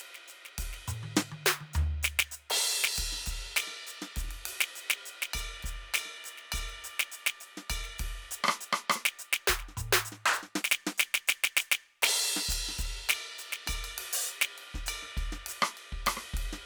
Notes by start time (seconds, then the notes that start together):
0.01 ride
0.14 snare
0.28 hi-hat pedal, ride
0.45 snare
0.58 kick, hi-hat pedal, ride
0.64 kick
0.67 kick
0.73 snare
0.88 hi-hat pedal, mid tom
1.03 high tom
1.16 snare, hi-hat pedal
1.32 high tom
1.46 snare, hi-hat pedal
1.60 high tom
1.73 floor tom, hi-hat pedal
2.03 snare, hi-hat pedal
2.19 snare
2.31 hi-hat pedal
2.50 crash
2.61 hi-hat pedal
2.84 snare
2.95 kick, hi-hat pedal, ride
3.12 snare
3.21 snare
3.26 kick, hi-hat pedal, ride
3.36 kick
3.56 snare, hi-hat pedal, ride bell
3.67 snare
3.87 hi-hat pedal, ride
4.02 snare
4.16 kick, snare, hi-hat pedal, ride
4.23 kick, snare
4.26 kick, snare
4.31 snare, ride
4.45 hi-hat pedal, ride
4.61 snare
4.75 hi-hat pedal, ride
4.90 snare
5.05 hi-hat pedal, ride
5.22 snare
5.33 kick, hi-hat pedal, ride bell
5.63 kick, hi-hat pedal, ride
5.73 kick
5.94 snare, hi-hat pedal, ride bell
6.05 snare
6.24 hi-hat pedal, ride
6.37 snare
6.52 kick, hi-hat pedal, ride bell
6.60 kick
6.69 snare
6.84 hi-hat pedal, ride
6.99 snare
7.12 hi-hat pedal, ride
7.26 snare
7.40 hi-hat pedal, ride
7.57 snare
7.70 kick, hi-hat pedal, ride bell
7.79 kick
7.84 snare
7.98 kick, hi-hat pedal, ride
8.07 kick
8.31 hi-hat pedal
8.44 cross-stick
8.48 cross-stick
8.61 hi-hat pedal
8.73 cross-stick
8.90 cross-stick, hi-hat pedal
8.95 cross-stick
9.05 snare
9.19 hi-hat pedal
9.33 snare
9.47 kick, snare, hi-hat pedal
9.59 snare
9.68 snare
9.77 kick, hi-hat pedal, mid tom
9.93 snare
10.05 hi-hat pedal
10.12 snare
10.25 percussion
10.33 hi-hat pedal
10.43 snare
10.55 snare
10.64 snare, hi-hat pedal
10.71 snare
10.87 snare
10.98 snare, hi-hat pedal
11.14 snare
11.27 snare, hi-hat pedal
11.44 snare
11.57 snare, hi-hat pedal
11.72 snare
12.02 snare, crash
12.36 snare
12.49 kick, hi-hat pedal, ride
12.55 kick
12.58 kick
12.69 snare
12.73 snare
12.76 kick, snare, hi-hat pedal, ride
12.80 snare
12.86 kick
12.90 kick
13.09 snare, hi-hat pedal, ride bell
13.38 hi-hat pedal, ride
13.52 snare
13.67 kick, snare, hi-hat pedal, ride bell
13.78 kick
13.84 ride bell
13.98 hi-hat pedal, ride
14.13 open hi-hat
14.29 ride
14.41 snare
14.58 ride
14.74 kick, snare
14.86 hi-hat pedal, ride bell
15.02 snare
15.17 kick, ride bell
15.24 kick
15.27 kick
15.32 snare
15.46 hi-hat pedal, ride
15.62 cross-stick
15.77 ride bell
15.92 kick
16.06 cross-stick, hi-hat pedal, ride
16.17 cross-stick
16.34 kick, ride
16.44 kick
16.53 snare